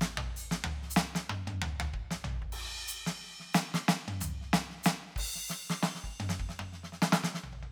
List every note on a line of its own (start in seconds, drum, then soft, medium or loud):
0.01 snare loud
0.17 floor tom loud
0.36 hi-hat pedal loud
0.51 snare loud
0.64 mid tom loud
0.82 snare soft
0.87 snare soft
0.90 snare soft
0.90 hi-hat pedal loud
0.96 snare loud
1.15 snare loud
1.29 high tom loud
1.47 high tom loud
1.62 mid tom loud
1.80 mid tom loud
1.93 kick medium
2.11 snare loud
2.24 floor tom loud
2.42 kick soft
2.52 ride loud
2.87 hi-hat pedal loud
3.06 snare loud
3.25 snare soft
3.40 snare soft
3.45 snare soft
3.49 snare soft
3.53 snare soft
3.53 snare loud
3.53 hi-hat pedal loud
3.74 snare loud
3.88 snare loud
4.08 high tom loud
4.20 hi-hat pedal loud
4.20 mid tom loud
4.41 snare soft
4.45 snare soft
4.53 snare loud
4.70 snare soft
4.76 snare soft
4.79 snare soft
4.79 hi-hat pedal loud
4.86 snare loud
5.00 snare soft
5.05 snare soft
5.09 snare soft
5.14 kick medium
5.14 snare soft
5.18 crash loud
5.35 snare soft
5.47 snare medium
5.47 hi-hat pedal loud
5.70 snare loud
5.83 snare loud
5.95 snare medium
6.04 kick soft
6.20 high tom loud
6.29 snare loud
6.39 kick medium
6.49 snare medium
6.59 high tom loud
6.72 snare soft
6.83 snare medium
6.92 snare medium
7.02 snare loud
7.12 snare loud
7.24 snare loud
7.34 snare medium
7.43 floor tom medium
7.53 floor tom medium
7.62 floor tom medium